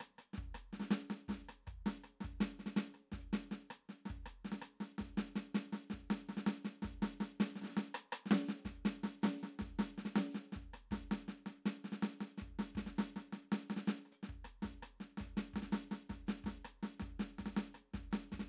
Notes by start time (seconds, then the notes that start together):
0.01 cross-stick
0.19 cross-stick, hi-hat pedal
0.34 snare
0.38 kick
0.55 cross-stick, hi-hat pedal
0.73 snare
0.80 snare
0.91 snare, hi-hat pedal
1.11 snare
1.29 kick, snare
1.31 snare, hi-hat pedal
1.49 cross-stick
1.67 kick, cross-stick, hi-hat pedal
1.87 snare
2.04 cross-stick, hi-hat pedal
2.21 kick, snare
2.41 snare, hi-hat pedal
2.60 snare
2.67 snare
2.77 snare, hi-hat pedal
2.95 cross-stick
3.12 kick, snare
3.19 hi-hat pedal
3.34 snare
3.52 snare, hi-hat pedal
3.71 cross-stick
3.90 snare, hi-hat pedal
4.06 snare
4.11 kick
4.27 cross-stick, hi-hat pedal
4.45 snare
4.53 snare
4.62 cross-stick, hi-hat pedal
4.81 snare
4.99 kick, snare, hi-hat pedal
5.06 kick
5.18 snare
5.36 snare, hi-hat pedal
5.55 snare
5.73 snare, hi-hat pedal
5.91 kick, snare
6.11 snare, hi-hat pedal
6.29 snare
6.38 snare
6.47 snare, hi-hat pedal
6.65 snare
6.83 kick, snare
6.87 hi-hat pedal
7.03 snare
7.21 snare, hi-hat pedal
7.41 snare
7.56 snare, hi-hat pedal
7.62 snare
7.64 snare
7.67 snare
7.69 snare
7.77 snare
7.95 cross-stick, hi-hat pedal
8.13 cross-stick
8.27 snare
8.32 snare
8.49 snare
8.66 kick, snare
8.75 hi-hat pedal
8.86 snare
9.04 snare
9.22 snare, hi-hat pedal
9.44 snare
9.60 kick, snare, hi-hat pedal
9.80 snare
9.98 snare, hi-hat pedal
10.06 snare
10.16 snare
10.35 snare, hi-hat pedal
10.53 kick, snare
10.74 cross-stick, hi-hat pedal
10.92 kick, snare
11.12 snare, hi-hat pedal
11.29 snare
11.47 snare, hi-hat pedal
11.66 snare
11.85 snare, hi-hat pedal
11.93 snare
12.03 snare
12.21 snare
12.27 hi-hat pedal
12.38 kick, snare
12.60 snare, hi-hat pedal
12.76 kick, snare
12.87 snare
12.97 snare, hi-hat pedal
13.17 snare
13.33 snare, hi-hat pedal
13.53 snare
13.71 snare, hi-hat pedal
13.77 snare
13.88 snare
14.06 cross-stick
14.12 hi-hat pedal
14.24 snare
14.30 kick
14.45 cross-stick, hi-hat pedal
14.63 kick, snare
14.83 cross-stick, hi-hat pedal
15.01 snare
15.18 snare, hi-hat pedal
15.20 kick, snare
15.38 snare
15.54 kick, snare
15.63 snare
15.73 snare
15.92 snare, hi-hat pedal
16.10 kick, snare
16.27 snare, hi-hat pedal
16.45 kick, snare
16.65 cross-stick, hi-hat pedal
16.83 snare
17.00 kick, snare, hi-hat pedal
17.20 snare
17.39 kick, snare, hi-hat pedal
17.47 snare
17.57 snare
17.75 cross-stick, hi-hat pedal
17.94 kick, snare
18.12 snare, hi-hat pedal
18.33 kick, snare
18.38 kick, snare